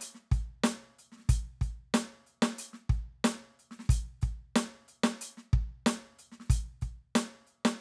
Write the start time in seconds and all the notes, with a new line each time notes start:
0.01 closed hi-hat
0.15 snare
0.32 closed hi-hat, kick
0.64 closed hi-hat, snare
0.99 closed hi-hat
1.12 snare
1.17 snare
1.19 snare
1.24 snare
1.29 closed hi-hat, kick
1.61 closed hi-hat, kick
1.94 closed hi-hat, snare
2.27 closed hi-hat
2.42 snare
2.49 snare
2.59 closed hi-hat
2.74 snare
2.90 closed hi-hat, kick
3.24 closed hi-hat, snare
3.32 snare
3.59 closed hi-hat
3.71 snare
3.79 snare
3.83 snare
3.89 closed hi-hat, kick
4.22 closed hi-hat, kick
4.56 closed hi-hat, snare
4.88 closed hi-hat
5.04 snare
5.21 closed hi-hat
5.38 snare
5.53 kick, closed hi-hat
5.86 closed hi-hat, snare
6.19 closed hi-hat
6.32 snare
6.40 snare
6.43 snare
6.47 closed hi-hat, kick, snare
6.82 closed hi-hat, kick
7.15 closed hi-hat, snare
7.47 closed hi-hat
7.65 snare